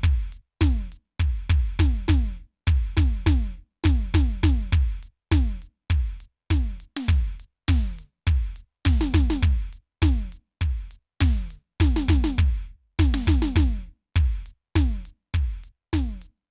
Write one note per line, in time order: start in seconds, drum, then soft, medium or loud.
0.01 closed hi-hat soft
0.01 kick loud
0.01 hi-hat pedal soft
0.32 closed hi-hat loud
0.61 kick loud
0.61 snare loud
0.92 closed hi-hat loud
1.19 kick loud
1.49 open hi-hat loud
1.49 kick loud
1.77 kick loud
1.77 snare loud
1.77 hi-hat pedal soft
2.08 open hi-hat loud
2.08 kick loud
2.08 snare loud
2.35 hi-hat pedal soft
2.67 open hi-hat loud
2.67 kick loud
2.95 closed hi-hat loud
2.95 kick loud
2.95 snare loud
2.95 hi-hat pedal soft
3.26 open hi-hat loud
3.26 kick loud
3.26 snare loud
3.51 hi-hat pedal medium
3.84 open hi-hat loud
3.84 kick loud
3.84 snare loud
4.14 open hi-hat loud
4.14 kick loud
4.14 snare loud
4.43 open hi-hat loud
4.43 kick loud
4.43 snare loud
4.70 kick loud
4.70 hi-hat pedal medium
5.03 closed hi-hat loud
5.31 kick loud
5.31 snare loud
5.62 closed hi-hat loud
5.90 kick loud
6.20 closed hi-hat loud
6.50 kick loud
6.50 snare loud
6.80 closed hi-hat loud
6.96 snare loud
7.03 hi-hat pedal soft
7.08 kick loud
7.40 closed hi-hat loud
7.68 kick loud
7.68 snare loud
7.99 closed hi-hat loud
8.27 kick loud
8.56 closed hi-hat loud
8.85 open hi-hat loud
8.85 kick loud
8.85 snare loud
9.01 snare loud
9.14 kick loud
9.14 snare loud
9.30 snare loud
9.40 kick loud
9.40 hi-hat pedal medium
9.73 closed hi-hat loud
10.02 kick loud
10.02 snare loud
10.32 closed hi-hat loud
10.61 kick loud
10.91 closed hi-hat loud
11.20 kick loud
11.20 snare loud
11.50 closed hi-hat loud
11.80 kick loud
11.80 snare loud
11.96 snare loud
12.08 kick loud
12.08 snare loud
12.24 snare loud
12.38 kick loud
12.67 kick soft
12.71 kick soft
12.99 kick loud
12.99 snare loud
13.14 snare loud
13.27 kick loud
13.27 snare loud
13.42 snare loud
13.56 kick loud
13.56 snare loud
14.14 kick loud
14.14 hi-hat pedal medium
14.46 closed hi-hat loud
14.75 kick loud
14.75 snare loud
15.05 closed hi-hat loud
15.34 kick loud
15.63 closed hi-hat loud
15.93 kick medium
15.93 snare loud
16.21 closed hi-hat loud